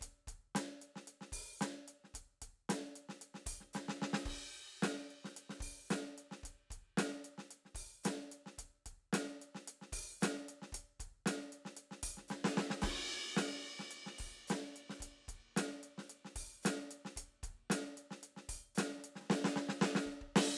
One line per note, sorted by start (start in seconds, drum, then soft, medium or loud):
0.01 kick soft
0.01 closed hi-hat medium
0.27 kick soft
0.27 closed hi-hat medium
0.55 snare medium
0.55 closed hi-hat loud
0.82 closed hi-hat medium
0.96 snare soft
1.07 closed hi-hat medium
1.21 snare soft
1.32 kick soft
1.32 open hi-hat loud
1.61 snare medium
1.61 closed hi-hat medium
1.61 hi-hat pedal medium
1.88 closed hi-hat medium
2.04 snare soft
2.14 kick soft
2.14 closed hi-hat medium
2.42 kick soft
2.42 closed hi-hat medium
2.69 snare medium
2.69 closed hi-hat loud
2.96 closed hi-hat medium
3.09 snare soft
3.21 closed hi-hat medium
3.34 snare soft
3.46 kick soft
3.46 open hi-hat loud
3.60 snare soft
3.73 snare medium
3.73 hi-hat pedal medium
3.89 snare medium
4.02 snare medium
4.13 snare medium
4.26 kick soft
4.26 crash medium
4.82 snare medium
4.82 closed hi-hat medium
5.11 closed hi-hat soft
5.25 snare soft
5.37 closed hi-hat medium
5.50 snare soft
5.60 kick soft
5.60 open hi-hat medium
5.90 snare medium
5.90 hi-hat pedal medium
5.90 open hi-hat medium
6.18 closed hi-hat medium
6.31 snare soft
6.43 kick soft
6.43 closed hi-hat medium
6.71 kick soft
6.71 closed hi-hat medium
6.98 snare medium
6.98 closed hi-hat medium
7.25 closed hi-hat medium
7.38 snare soft
7.51 closed hi-hat medium
7.65 snare soft
7.75 kick soft
7.75 open hi-hat medium
8.04 snare medium
8.04 closed hi-hat loud
8.04 hi-hat pedal medium
8.32 closed hi-hat medium
8.46 snare soft
8.58 kick soft
8.58 closed hi-hat medium
8.86 kick soft
8.86 closed hi-hat medium
9.13 snare medium
9.13 closed hi-hat loud
9.42 closed hi-hat medium
9.55 snare soft
9.68 closed hi-hat medium
9.81 snare soft
9.93 kick soft
9.93 open hi-hat loud
10.21 snare medium
10.21 closed hi-hat loud
10.21 hi-hat pedal medium
10.49 closed hi-hat medium
10.62 snare soft
10.72 kick soft
10.72 closed hi-hat loud
11.00 kick soft
11.00 closed hi-hat medium
11.26 snare medium
11.26 closed hi-hat loud
11.52 closed hi-hat medium
11.65 snare soft
11.77 closed hi-hat medium
11.91 snare soft
12.03 kick soft
12.03 open hi-hat loud
12.17 snare soft
12.28 snare medium
12.28 hi-hat pedal medium
12.44 snare medium
12.57 snare medium
12.70 snare medium
12.82 kick soft
12.82 snare medium
12.82 ride loud
13.37 snare medium
13.37 closed hi-hat medium
13.65 closed hi-hat soft
13.79 snare soft
13.91 closed hi-hat medium
14.06 snare soft
14.19 kick soft
14.19 open hi-hat medium
14.48 snare medium
14.48 closed hi-hat medium
14.48 hi-hat pedal medium
14.76 closed hi-hat medium
14.90 snare soft
15.00 kick soft
15.00 closed hi-hat medium
15.28 kick soft
15.28 closed hi-hat medium
15.57 snare medium
15.57 closed hi-hat loud
15.83 closed hi-hat medium
15.98 snare soft
16.10 closed hi-hat medium
16.25 snare soft
16.36 kick soft
16.36 open hi-hat loud
16.63 snare medium
16.63 closed hi-hat loud
16.63 hi-hat pedal medium
16.91 closed hi-hat medium
17.05 snare soft
17.16 kick soft
17.16 closed hi-hat medium
17.43 kick soft
17.43 closed hi-hat medium
17.70 snare medium
17.70 closed hi-hat loud
17.97 closed hi-hat medium
18.11 snare soft
18.23 closed hi-hat medium
18.37 snare soft
18.49 kick soft
18.49 open hi-hat loud
18.75 snare medium
18.75 closed hi-hat loud
18.75 hi-hat pedal medium
18.98 snare soft
19.04 closed hi-hat medium
19.16 snare soft
19.20 snare soft
19.24 snare soft
19.30 snare loud
19.44 snare medium
19.56 snare medium
19.69 snare medium
19.81 snare loud
19.95 snare medium
20.06 kick soft
20.21 kick soft
20.36 snare loud
20.36 crash loud